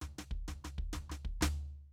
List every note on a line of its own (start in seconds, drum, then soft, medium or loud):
0.01 snare soft
0.01 floor tom medium
0.18 snare soft
0.18 floor tom soft
0.31 kick soft
0.48 snare soft
0.48 floor tom medium
0.64 snare soft
0.64 floor tom soft
0.78 kick soft
0.93 snare soft
0.93 floor tom medium
1.09 snare soft
1.09 floor tom soft
1.25 kick soft
1.41 snare medium
1.41 floor tom medium